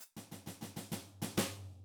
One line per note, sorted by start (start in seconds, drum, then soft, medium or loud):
0.00 hi-hat pedal medium
0.17 snare soft
0.17 floor tom medium
0.32 snare soft
0.32 floor tom medium
0.46 snare medium
0.46 floor tom medium
0.61 snare medium
0.61 floor tom medium
0.76 snare medium
0.76 floor tom medium
0.92 snare medium
0.92 floor tom medium
1.22 snare medium
1.22 floor tom loud
1.37 snare loud
1.37 floor tom loud